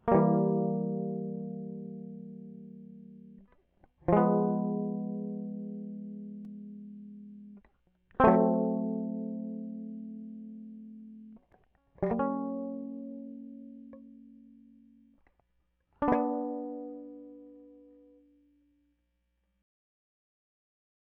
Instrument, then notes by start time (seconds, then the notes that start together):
electric guitar
0.08 G3 A#3
0.15 E3
4.13 E3 G#3 B3
4.22 F3
8.20 C4
8.25 F#3 A3
8.33 F3
9.60 F#3
12.07 F#3
12.12 A#3
12.20 C#4
16.02 D4
16.14 A#3